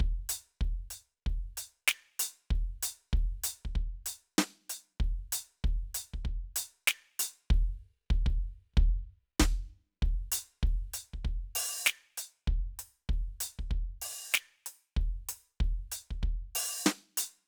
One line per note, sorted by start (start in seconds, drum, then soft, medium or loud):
0.00 kick medium
0.00 crash soft
0.29 closed hi-hat loud
0.61 kick medium
0.61 crash soft
0.90 closed hi-hat medium
1.26 kick medium
1.26 crash soft
1.57 closed hi-hat medium
1.88 snare loud
2.19 closed hi-hat loud
2.50 kick medium
2.55 crash soft
2.55 ride soft
2.82 closed hi-hat loud
3.13 kick medium
3.13 crash soft
3.43 closed hi-hat loud
3.65 kick soft
3.75 kick medium
4.06 closed hi-hat medium
4.38 snare loud
4.69 closed hi-hat medium
5.00 kick medium
5.04 crash soft
5.32 closed hi-hat loud
5.64 kick medium
5.64 crash soft
5.94 closed hi-hat loud
6.13 kick soft
6.25 kick medium
6.56 closed hi-hat loud
6.87 snare loud
7.19 closed hi-hat loud
7.50 kick medium
7.50 crash soft
8.10 kick medium
8.10 crash soft
8.15 ride soft
8.26 kick medium
8.26 crash soft
8.73 kick soft
8.77 kick loud
8.99 kick soft
9.39 kick medium
9.39 snare loud
10.02 kick medium
10.02 crash soft
10.32 closed hi-hat loud
10.63 kick medium
10.63 crash soft
10.67 ride soft
10.93 closed hi-hat medium
11.13 kick soft
11.24 kick medium
11.24 crash soft
11.55 open hi-hat loud
11.85 snare loud
11.85 hi-hat pedal medium
12.17 closed hi-hat medium
12.47 kick medium
12.79 closed hi-hat medium
13.09 kick medium
13.13 crash soft
13.40 closed hi-hat loud
13.59 kick soft
13.71 kick medium
14.01 open hi-hat medium
14.32 snare loud
14.32 hi-hat pedal medium
14.66 closed hi-hat medium
14.96 kick medium
15.01 crash soft
15.29 closed hi-hat loud
15.60 kick medium
15.64 crash soft
15.91 closed hi-hat medium
16.10 kick soft
16.23 kick medium
16.55 open hi-hat loud
16.85 snare loud
16.85 hi-hat pedal soft
17.17 closed hi-hat loud